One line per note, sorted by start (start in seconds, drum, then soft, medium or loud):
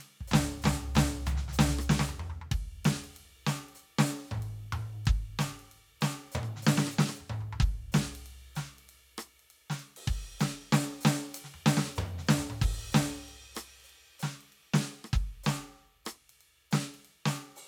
0.01 ride medium
0.21 kick medium
0.28 floor tom loud
0.28 hi-hat pedal medium
0.34 snare loud
0.62 snare loud
0.62 floor tom loud
0.62 hi-hat pedal medium
0.95 snare loud
0.95 floor tom loud
0.95 hi-hat pedal medium
1.27 floor tom loud
1.27 hi-hat pedal medium
1.37 snare medium
1.48 snare medium
1.53 hi-hat pedal medium
1.59 snare loud
1.69 snare medium
1.79 cross-stick medium
1.79 hi-hat pedal medium
1.90 snare loud
1.99 snare medium
2.04 hi-hat pedal soft
2.09 mid tom medium
2.20 mid tom medium
2.30 floor tom medium
2.42 floor tom medium
2.52 kick loud
2.52 ride medium
2.85 snare loud
2.85 hi-hat pedal medium
2.85 ride medium
3.04 ride soft
3.13 hi-hat pedal soft
3.13 ride medium
3.47 snare loud
3.47 hi-hat pedal medium
3.47 ride medium
3.69 ride soft
3.75 hi-hat pedal soft
3.80 ride soft
3.99 snare loud
4.07 hi-hat pedal medium
4.07 ride soft
4.31 high tom loud
4.38 kick medium
4.43 ride soft
4.73 high tom loud
4.73 ride medium
4.82 kick soft
5.06 kick loud
5.06 ride medium
5.39 snare medium
5.39 hi-hat pedal medium
5.39 ride medium
5.60 ride soft
5.72 ride soft
6.01 snare loud
6.01 hi-hat pedal medium
6.01 ride medium
6.32 hi-hat pedal medium
6.32 high tom loud
6.43 cross-stick soft
6.56 snare soft
6.63 hi-hat pedal medium
6.67 snare loud
6.78 snare loud
6.87 cross-stick medium
6.91 hi-hat pedal medium
6.99 snare loud
7.09 cross-stick medium
7.15 hi-hat pedal soft
7.20 mid tom soft
7.30 high tom loud
7.41 floor tom medium
7.53 floor tom medium
7.60 kick loud
7.60 ride medium
7.92 snare loud
7.92 hi-hat pedal soft
7.92 ride medium
8.15 ride medium
8.26 ride medium
8.56 snare medium
8.56 hi-hat pedal medium
8.56 ride soft
8.79 ride soft
8.89 ride soft
9.18 cross-stick medium
9.18 hi-hat pedal soft
9.18 ride soft
9.40 ride soft
9.51 ride soft
9.70 snare medium
9.70 hi-hat pedal soft
9.80 ride soft
9.97 crash medium
10.08 kick loud
10.08 ride soft
10.40 snare loud
10.40 hi-hat pedal medium
10.40 ride medium
10.73 snare loud
10.73 ride medium
11.01 hi-hat pedal medium
11.01 ride medium
11.05 snare loud
11.34 hi-hat pedal medium
11.34 ride loud
11.44 snare soft
11.54 mid tom soft
11.66 snare loud
11.66 hi-hat pedal medium
11.77 snare loud
11.88 cross-stick soft
11.96 hi-hat pedal medium
11.96 mid tom loud
12.07 cross-stick soft
12.19 snare soft
12.27 snare loud
12.27 hi-hat pedal soft
12.38 floor tom medium
12.50 high tom medium
12.62 kick loud
12.62 crash medium
12.92 snare loud
12.92 hi-hat pedal medium
12.92 ride medium
13.29 ride soft
13.55 cross-stick medium
13.55 hi-hat pedal medium
13.55 ride medium
13.80 hi-hat pedal soft
13.80 ride soft
13.90 ride soft
14.20 snare medium
14.20 hi-hat pedal medium
14.20 ride soft
14.41 ride soft
14.53 ride soft
14.74 snare loud
14.74 hi-hat pedal soft
15.04 cross-stick medium
15.13 kick loud
15.13 hi-hat pedal soft
15.13 ride soft
15.44 snare loud
15.44 hi-hat pedal medium
16.06 cross-stick medium
16.06 hi-hat pedal medium
16.06 ride soft
16.30 ride soft
16.41 ride soft
16.71 snare loud
16.71 hi-hat pedal medium
16.71 ride medium
16.94 ride soft
17.05 ride soft
17.26 snare loud
17.26 hi-hat pedal soft
17.37 ride soft
17.56 open hi-hat medium